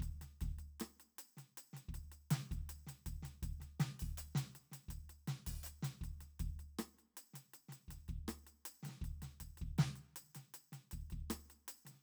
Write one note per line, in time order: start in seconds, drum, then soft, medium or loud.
0.00 kick soft
0.00 percussion soft
0.22 snare soft
0.22 percussion soft
0.42 kick soft
0.42 snare soft
0.42 percussion soft
0.59 percussion soft
0.81 cross-stick medium
0.81 percussion medium
1.01 percussion soft
1.19 percussion medium
1.38 snare soft
1.38 percussion soft
1.58 percussion medium
1.74 snare soft
1.74 percussion soft
1.89 kick soft
1.95 percussion soft
2.12 percussion soft
2.31 snare medium
2.31 percussion medium
2.52 kick soft
2.52 percussion soft
2.70 percussion medium
2.88 snare soft
2.88 percussion medium
3.07 kick soft
3.07 percussion medium
3.23 snare soft
3.23 percussion soft
3.43 kick soft
3.43 percussion medium
3.61 snare soft
3.61 percussion soft
3.80 snare medium
3.80 percussion medium
4.00 kick soft
4.00 percussion medium
4.18 percussion medium
4.36 snare medium
4.36 percussion medium
4.56 percussion soft
4.72 snare soft
4.72 percussion medium
4.89 kick soft
4.89 percussion medium
5.10 percussion soft
5.28 snare soft
5.28 percussion soft
5.47 kick soft
5.47 percussion medium
5.64 percussion medium
5.67 percussion medium
5.83 snare soft
5.83 percussion medium
6.02 kick soft
6.02 percussion soft
6.21 snare soft
6.21 percussion soft
6.40 kick soft
6.40 percussion medium
6.60 percussion soft
6.80 cross-stick medium
6.80 percussion medium
6.99 percussion soft
7.18 percussion medium
7.34 snare soft
7.34 percussion medium
7.54 percussion soft
7.69 snare soft
7.69 percussion soft
7.89 kick soft
7.89 snare soft
7.89 percussion soft
8.09 kick soft
8.09 percussion soft
8.29 cross-stick medium
8.29 percussion medium
8.47 percussion soft
8.66 percussion medium
8.84 snare soft
8.84 percussion soft
8.87 snare soft
8.90 snare soft
8.98 snare soft
9.02 kick soft
9.02 percussion soft
9.23 snare soft
9.23 percussion soft
9.41 kick soft
9.41 percussion medium
9.58 percussion soft
9.62 kick soft
9.79 snare medium
9.79 percussion soft
9.96 percussion soft
10.17 percussion medium
10.36 snare soft
10.36 percussion medium
10.55 percussion medium
10.73 snare soft
10.73 percussion soft
10.92 kick soft
10.92 percussion medium
11.11 kick soft
11.11 percussion soft
11.31 cross-stick medium
11.31 percussion medium
11.51 percussion soft
11.69 percussion medium
11.86 snare soft
11.86 percussion soft
11.89 snare soft
11.92 snare soft
11.96 snare soft